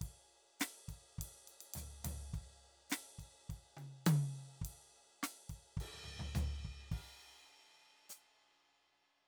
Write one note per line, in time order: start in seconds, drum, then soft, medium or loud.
0.01 kick soft
0.01 ride soft
0.60 snare medium
0.60 hi-hat pedal medium
0.60 ride medium
0.88 kick soft
0.88 ride soft
1.18 kick soft
1.18 ride medium
1.47 ride soft
1.61 ride soft
1.74 floor tom soft
1.74 hi-hat pedal medium
1.74 ride medium
2.04 floor tom medium
2.04 ride medium
2.33 kick soft
2.33 ride soft
2.90 snare medium
2.90 hi-hat pedal medium
2.90 ride medium
3.19 kick soft
3.19 ride soft
3.49 kick soft
3.49 ride soft
3.77 high tom soft
3.77 ride soft
4.06 hi-hat pedal medium
4.06 high tom loud
4.06 ride medium
4.61 kick soft
4.61 ride medium
5.23 snare medium
5.23 hi-hat pedal medium
5.23 ride medium
5.49 kick soft
5.49 ride soft
5.77 kick soft
5.77 ride medium
5.94 floor tom soft
6.04 floor tom soft
6.19 floor tom medium
6.35 floor tom medium
6.35 hi-hat pedal medium
6.65 kick soft
6.91 kick soft
6.91 crash soft
8.09 hi-hat pedal medium